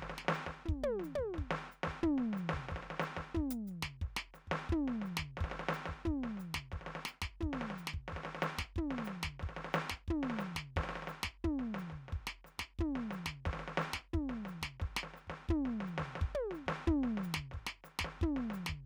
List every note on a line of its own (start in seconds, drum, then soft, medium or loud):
0.03 snare soft
0.10 snare soft
0.18 snare soft
0.25 snare soft
0.28 snare medium
0.34 hi-hat pedal soft
0.46 kick soft
0.46 snare soft
0.65 kick soft
0.65 floor tom medium
0.83 high tom loud
1.00 snare soft
1.04 hi-hat pedal medium
1.15 kick soft
1.15 high tom loud
1.34 snare soft
1.38 kick soft
1.51 snare medium
1.68 snare soft
1.68 hi-hat pedal soft
1.83 kick soft
1.83 snare medium
2.02 kick soft
2.02 floor tom loud
2.18 snare soft
2.33 snare soft
2.33 hi-hat pedal medium
2.49 snare medium
2.53 kick soft
2.69 kick soft
2.69 snare soft
2.76 snare soft
2.83 snare soft
2.90 snare soft
2.97 snare soft
3.00 snare medium
3.00 hi-hat pedal soft
3.17 kick soft
3.17 snare soft
3.34 kick soft
3.34 floor tom medium
3.51 closed hi-hat loud
3.67 hi-hat pedal medium
3.71 snare soft
3.82 kick soft
3.82 snare medium
4.02 kick soft
4.02 snare soft
4.17 snare loud
4.34 snare soft
4.34 hi-hat pedal soft
4.47 kick soft
4.51 snare medium
4.69 kick soft
4.69 floor tom medium
4.88 snare soft
5.02 snare soft
5.02 hi-hat pedal soft
5.17 kick soft
5.17 snare medium
5.37 kick soft
5.37 snare soft
5.44 snare soft
5.50 snare soft
5.52 snare soft
5.60 snare soft
5.69 snare medium
5.73 hi-hat pedal medium
5.86 kick soft
5.86 snare soft
6.04 kick soft
6.04 floor tom medium
6.24 snare soft
6.37 snare soft
6.37 hi-hat pedal medium
6.54 kick soft
6.54 snare medium
6.72 kick soft
6.72 snare soft
6.81 snare soft
6.86 snare soft
6.95 snare soft
7.05 snare medium
7.05 hi-hat pedal medium
7.22 kick soft
7.22 snare medium
7.40 kick soft
7.40 floor tom medium
7.53 snare soft
7.61 snare soft
7.70 snare soft
7.78 hi-hat pedal medium
7.87 snare medium
7.94 kick soft
8.08 snare soft
8.12 kick soft
8.16 snare soft
8.24 snare soft
8.35 snare soft
8.42 snare medium
8.42 hi-hat pedal medium
8.58 kick soft
8.58 snare medium
8.76 kick soft
8.76 floor tom medium
8.91 snare soft
8.98 snare soft
9.05 snare soft
9.05 hi-hat pedal medium
9.23 kick soft
9.23 snare medium
9.40 kick soft
9.40 snare soft
9.49 snare soft
9.57 snare soft
9.65 snare soft
9.73 snare medium
9.73 hi-hat pedal medium
9.90 kick soft
9.90 snare medium
10.08 kick soft
10.08 floor tom medium
10.23 snare soft
10.30 snare soft
10.37 snare soft
10.39 snare medium
10.39 hi-hat pedal medium
10.55 kick soft
10.55 snare medium
10.76 kick soft
10.76 snare medium
10.84 snare soft
10.89 snare soft
10.96 snare soft
11.02 snare soft
11.07 snare soft
11.07 hi-hat pedal medium
11.23 kick soft
11.23 snare medium
11.44 kick soft
11.44 floor tom medium
11.59 snare soft
11.74 snare soft
11.74 hi-hat pedal soft
11.90 kick soft
11.90 snare soft
12.08 snare soft
12.12 kick soft
12.27 snare medium
12.45 snare soft
12.45 hi-hat pedal soft
12.59 kick soft
12.59 snare medium
12.79 kick soft
12.79 floor tom medium
12.96 snare soft
13.11 snare soft
13.11 hi-hat pedal soft
13.26 kick soft
13.26 snare medium
13.46 kick soft
13.46 snare soft
13.53 snare soft
13.59 snare soft
13.68 snare soft
13.78 snare medium
13.78 hi-hat pedal soft
13.93 kick soft
13.93 snare medium
14.13 kick soft
14.13 floor tom medium
14.29 snare soft
14.45 snare soft
14.45 hi-hat pedal soft
14.62 kick soft
14.62 snare medium
14.80 kick soft
14.80 snare soft
14.97 snare loud
15.03 snare soft
15.14 snare soft
15.14 hi-hat pedal soft
15.27 kick soft
15.27 snare soft
15.49 kick soft
15.49 floor tom medium
15.65 snare soft
15.80 snare soft
15.87 hi-hat pedal soft
15.98 kick soft
15.98 snare medium
16.15 snare soft
16.21 kick soft
16.35 high tom loud
16.51 snare soft
16.51 hi-hat pedal soft
16.66 kick soft
16.66 snare medium
16.87 kick soft
16.87 floor tom loud
17.04 snare soft
17.17 snare soft
17.23 hi-hat pedal medium
17.34 kick soft
17.34 snare medium
17.51 kick soft
17.51 snare soft
17.67 snare medium
17.84 snare soft
17.84 hi-hat pedal medium
17.99 kick soft
17.99 snare loud
18.05 snare soft
18.21 kick soft
18.21 floor tom medium
18.36 snare soft
18.50 snare soft
18.50 hi-hat pedal medium
18.66 kick soft
18.66 snare medium